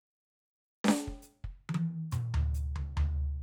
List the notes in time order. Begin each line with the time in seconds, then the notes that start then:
0.84 snare
0.88 snare
1.07 kick
1.22 hi-hat pedal
1.44 kick
1.69 high tom
1.74 high tom
2.11 hi-hat pedal, mid tom
2.34 floor tom
2.54 hi-hat pedal
2.76 floor tom
2.97 floor tom